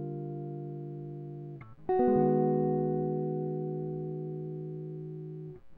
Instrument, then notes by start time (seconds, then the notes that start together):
electric guitar
1.89 F#4
2.00 B3
2.08 G#3
2.18 D#3